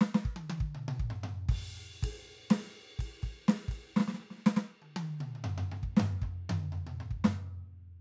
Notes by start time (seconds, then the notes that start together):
0.03 snare
0.15 snare
0.25 kick
0.36 high tom
0.50 high tom
0.61 kick
0.75 mid tom
0.88 mid tom
1.00 kick
1.10 floor tom
1.24 floor tom
1.49 kick, ride
1.77 ride
2.03 kick, ride
2.51 snare, ride
2.99 kick, ride
3.23 kick, ride
3.49 snare, ride
3.69 kick, ride
3.94 kick, snare, hi-hat pedal
4.00 snare
4.08 snare
4.14 snare
4.20 snare
4.31 snare
4.34 snare
4.38 snare
4.45 snare, hi-hat pedal
4.57 snare
4.82 high tom
4.96 high tom
5.11 high tom
5.19 hi-hat pedal, mid tom
5.35 mid tom
5.44 floor tom
5.58 floor tom
5.72 floor tom
5.83 kick
5.97 snare, floor tom
6.22 kick, floor tom
6.50 floor tom, high tom
6.72 floor tom
6.87 mid tom
7.00 floor tom
7.11 kick
7.24 snare, floor tom